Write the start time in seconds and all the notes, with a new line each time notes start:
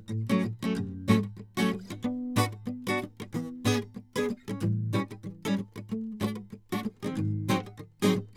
0.09 A2
0.30 F#3 A3 C#4
0.64 F#3 A3 C#4
0.76 F#2 C3
1.09 F#3 A3 C#4
1.58 F#3 A3 C#4 F#4
1.93 D4
2.04 B3 D4
2.37 B3 D4 F#4 B4
2.68 B3
2.88 B3 D4 F#4 B4
3.34 E3 B3
3.66 B3 D4 G#4 B4
4.17 B3 G#4 B4
4.49 C#4 A4
4.62 A2 E3 G3
4.94 E3 G3 C#4
5.24 D#3
5.49 G3 C#4
5.90 A3
6.22 G#3 D4 F#4
6.73 D4 F#4
7.04 C4 D#4 G#4
7.08 D#3
7.18 G#2 D#3
7.50 F#3 C4 D#4
8.03 D3 F#3 C4 D#4 G#4